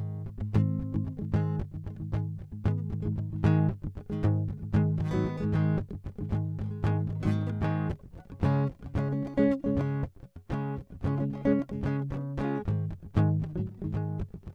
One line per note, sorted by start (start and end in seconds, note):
0.01 0.27 G#2
0.01 0.27 D#3
0.28 0.42 G#2
0.43 0.56 G#2
0.56 0.81 G#2
0.56 0.95 D#3
0.56 0.84 G#3
0.56 1.17 C4
0.81 0.97 G#2
0.96 1.06 G#2
0.96 1.09 D#3
1.07 1.17 G2
1.07 1.21 D3
1.20 1.35 D#3
1.20 1.33 G#3
1.35 1.44 G#2
1.35 1.60 D#3
1.35 1.63 G#3
1.35 1.61 C4
1.44 1.61 G#2
1.61 1.72 G2
1.61 1.71 D3
1.73 1.87 G2
1.73 1.88 D#3
1.88 1.98 G2
1.88 1.99 D#3
1.98 2.14 D#3
1.98 2.09 G#3
2.03 2.13 G#2
2.15 2.40 G#2
2.15 2.40 D#3
2.15 2.25 G#3
2.40 2.49 G2
2.67 2.77 G#2
2.67 2.91 D#3
2.67 2.80 G#3
2.77 2.92 G#2
2.92 3.07 G#2
2.92 3.04 D#3
3.04 3.19 G#2
3.04 3.20 D#3
3.04 3.13 G#3
3.19 3.42 G#2
3.19 3.30 D#3
3.35 3.46 D#3
3.45 3.55 G#2
3.45 3.74 D#3
3.45 3.72 G#3
3.56 3.79 G#2
4.11 4.24 D#3
4.11 4.26 G#3
4.25 4.50 G#2
4.25 4.49 D#3
4.25 4.51 G#3
4.50 4.58 G2
4.75 4.84 G#2
4.75 4.99 D#3
4.75 5.00 G#3
4.85 5.00 G#2
4.99 5.17 G#2
4.99 5.17 D#3
4.99 5.15 F#3
5.12 5.28 F#3
5.12 5.38 B3
5.17 5.27 G#2
5.17 5.29 D#3
5.27 5.39 G#2
5.27 5.42 D#3
5.27 5.38 F#3
5.39 5.55 G#3
5.39 5.50 B3
5.43 5.55 D#3
5.54 5.61 G#2
5.54 5.81 D#3
5.54 5.80 G#3
5.54 5.73 A3
5.62 5.79 G#2
5.79 5.88 G2
5.95 6.02 G2
6.08 6.23 G2
6.20 6.34 A2
6.20 6.32 G#3
6.33 6.59 G#2
6.33 6.60 D#3
6.33 6.58 G#3
6.60 6.83 G#2
6.60 6.87 D#3
6.60 6.72 G#3
6.73 6.83 G#3
6.85 7.08 G#2
6.85 7.07 D#3
6.85 7.04 G#3
7.09 7.27 G#2
7.09 7.25 D#3
7.24 7.54 G#2
7.24 7.63 D#3
7.24 7.40 F#3
7.54 7.63 G#2
7.63 7.96 G#2
7.63 7.98 D#3
7.63 7.74 G#3
7.74 7.93 G#3
8.45 8.71 C#3
8.45 8.72 G#3
8.45 8.73 C#4
8.86 8.97 C#3
8.97 9.24 C#3
8.97 9.24 G#3
8.97 9.11 C#4
9.14 9.28 C#4
9.24 9.42 C#3
9.24 9.31 G#3
9.39 9.51 C#3
9.39 9.57 G#3
9.39 9.52 C#4
9.52 9.61 C#3
9.52 9.60 C#4
9.65 9.75 G#3
9.65 9.82 C#4
9.79 9.89 C#3
9.79 10.08 G#3
9.79 10.09 C#4
9.89 10.06 C#3
10.51 10.80 C#3
10.51 10.81 G#3
10.55 10.82 C#4
11.07 11.29 C#3
11.07 11.23 G#3
11.07 11.17 C#4
11.22 11.34 G#3
11.22 11.46 C#4
11.32 11.50 C#3
11.32 11.47 G#3
11.46 11.57 C#3
11.46 11.64 G#3
11.46 11.54 C#4
11.54 11.68 C#4
11.60 11.75 C3
11.70 11.85 G#3
11.70 11.81 C#4
11.75 11.82 C#3
11.85 12.11 C#3
11.85 12.07 G#3
11.85 12.08 C#4
12.12 12.38 C#3
12.39 12.62 C#3
12.39 12.67 G#3
12.43 12.64 C#4
12.70 12.90 G#2
12.70 12.90 D#3
12.92 13.02 F#2
13.18 13.41 G#2
13.18 13.67 D#3
13.18 13.45 G#3
13.41 13.52 G2
13.57 13.67 G#2
13.57 13.67 F#3
13.69 13.79 G#2
13.83 13.97 D#3
13.83 13.93 G#3
13.95 14.03 G#2
13.95 14.22 D#3
13.95 14.23 G#3
14.03 14.34 G#2